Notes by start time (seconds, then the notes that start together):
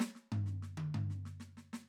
0.01 snare
0.16 snare
0.33 floor tom
0.47 snare
0.63 snare
0.78 high tom
0.95 floor tom
1.11 snare
1.26 snare
1.41 snare
1.58 snare
1.74 snare